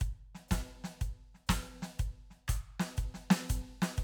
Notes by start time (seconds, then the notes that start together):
0.01 closed hi-hat, kick
0.36 snare
0.49 closed hi-hat, kick, snare, hi-hat pedal
0.85 snare
1.02 closed hi-hat, kick
1.35 snare
1.48 closed hi-hat, kick, snare, hi-hat pedal
1.83 snare
2.00 closed hi-hat, kick
2.31 snare
2.48 closed hi-hat, kick, cross-stick, hi-hat pedal
2.81 snare
2.98 closed hi-hat, kick
3.15 snare
3.31 snare
3.49 closed hi-hat, kick, hi-hat pedal
3.83 closed hi-hat, snare
3.98 closed hi-hat, kick